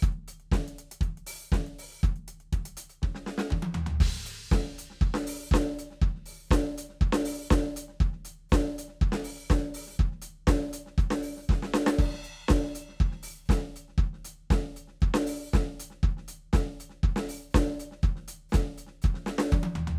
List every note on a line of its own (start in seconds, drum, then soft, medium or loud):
0.01 kick loud
0.01 closed hi-hat medium
0.01 hi-hat pedal soft
0.13 closed hi-hat soft
0.24 kick soft
0.29 closed hi-hat medium
0.41 closed hi-hat soft
0.53 kick loud
0.53 snare loud
0.69 closed hi-hat medium
0.79 closed hi-hat medium
0.92 closed hi-hat loud
1.02 kick loud
1.02 closed hi-hat medium
1.18 closed hi-hat soft
1.27 open hi-hat loud
1.43 open hi-hat soft
1.49 kick loud
1.49 snare loud
1.49 hi-hat pedal soft
1.67 closed hi-hat soft
1.79 open hi-hat loud
1.94 open hi-hat soft
2.01 kick loud
2.01 hi-hat pedal soft
2.05 closed hi-hat medium
2.17 closed hi-hat soft
2.29 closed hi-hat medium
2.41 closed hi-hat soft
2.53 kick loud
2.53 closed hi-hat medium
2.66 closed hi-hat loud
2.76 closed hi-hat loud
2.76 kick soft
2.90 closed hi-hat medium
3.03 kick loud
3.03 snare medium
3.16 snare medium
3.27 snare loud
3.39 snare loud
3.51 kick loud
3.51 high tom loud
3.63 high tom loud
3.75 floor tom loud
3.87 floor tom loud
4.01 kick loud
4.01 crash loud
4.27 closed hi-hat medium
4.50 kick loud
4.50 snare loud
4.50 hi-hat pedal soft
4.60 snare soft
4.79 closed hi-hat loud
4.91 snare soft
5.02 kick loud
5.02 closed hi-hat soft
5.15 snare loud
5.23 snare soft
5.28 open hi-hat loud
5.49 kick loud
5.49 hi-hat pedal soft
5.55 snare loud
5.55 closed hi-hat soft
5.79 closed hi-hat medium
5.91 snare soft
6.03 kick loud
6.03 closed hi-hat soft
6.16 snare soft
6.27 open hi-hat medium
6.48 kick loud
6.48 hi-hat pedal soft
6.52 closed hi-hat medium
6.52 snare loud
6.69 snare soft
6.79 closed hi-hat loud
6.90 snare soft
7.02 kick loud
7.02 closed hi-hat soft
7.13 snare loud
7.26 open hi-hat loud
7.48 kick loud
7.48 snare loud
7.48 hi-hat pedal soft
7.54 closed hi-hat soft
7.58 snare soft
7.67 snare soft
7.70 snare soft
7.77 closed hi-hat loud
7.89 snare soft
7.94 snare soft
8.01 closed hi-hat soft
8.01 kick loud
8.13 snare soft
8.26 open hi-hat medium
8.50 kick loud
8.50 snare loud
8.50 hi-hat pedal soft
8.55 closed hi-hat soft
8.79 closed hi-hat loud
8.89 snare soft
9.02 kick loud
9.02 closed hi-hat soft
9.13 snare loud
9.19 snare soft
9.25 open hi-hat loud
9.48 kick loud
9.48 snare loud
9.48 closed hi-hat medium
9.48 hi-hat pedal soft
9.58 snare soft
9.70 snare soft
9.75 open hi-hat loud
9.87 snare soft
9.90 snare soft
9.92 snare soft
9.92 hi-hat pedal soft
10.00 kick loud
10.00 closed hi-hat soft
10.12 snare soft
10.15 snare soft
10.23 closed hi-hat loud
10.48 kick loud
10.48 snare loud
10.48 closed hi-hat medium
10.74 closed hi-hat loud
10.87 snare soft
10.99 closed hi-hat soft
10.99 kick loud
11.11 snare loud
11.18 snare soft
11.24 open hi-hat medium
11.38 snare soft
11.46 hi-hat pedal soft
11.50 kick loud
11.50 snare medium
11.63 snare loud
11.75 snare loud
11.87 snare loud
11.99 kick loud
11.99 crash loud
12.13 snare soft
12.20 kick soft
12.24 closed hi-hat medium
12.49 kick loud
12.49 snare loud
12.65 snare soft
12.76 closed hi-hat medium
12.89 snare soft
13.00 kick loud
13.00 closed hi-hat soft
13.12 snare soft
13.24 open hi-hat loud
13.46 kick loud
13.46 hi-hat pedal soft
13.51 closed hi-hat medium
13.51 snare loud
13.58 snare soft
13.77 closed hi-hat medium
13.89 snare soft
13.99 kick loud
13.99 closed hi-hat soft
14.14 snare soft
14.25 closed hi-hat loud
14.51 kick loud
14.51 snare loud
14.51 closed hi-hat soft
14.77 closed hi-hat medium
14.88 snare soft
15.01 kick loud
15.01 closed hi-hat soft
15.15 snare loud
15.28 open hi-hat loud
15.52 kick loud
15.52 snare loud
15.52 hi-hat pedal soft
15.56 closed hi-hat soft
15.62 snare soft
15.80 closed hi-hat loud
15.91 snare soft
16.04 kick loud
16.04 closed hi-hat soft
16.18 snare soft
16.29 closed hi-hat loud
16.54 closed hi-hat soft
16.54 kick loud
16.54 snare loud
16.81 closed hi-hat medium
16.90 snare soft
17.04 kick loud
17.04 closed hi-hat soft
17.17 snare loud
17.24 snare soft
17.30 open hi-hat loud
17.51 kick loud
17.51 snare loud
17.51 hi-hat pedal soft
17.57 closed hi-hat soft
17.80 closed hi-hat medium
17.92 snare soft
18.03 closed hi-hat soft
18.03 kick loud
18.16 snare soft
18.29 closed hi-hat loud
18.50 snare loud
18.50 hi-hat pedal soft
18.54 closed hi-hat medium
18.54 kick loud
18.79 closed hi-hat medium
18.88 snare soft
19.03 closed hi-hat medium
19.03 kick loud
19.15 snare medium
19.27 snare loud
19.39 snare loud
19.52 kick loud
19.52 hi-hat pedal medium
19.52 high tom loud
19.64 high tom loud
19.76 floor tom loud
19.88 floor tom loud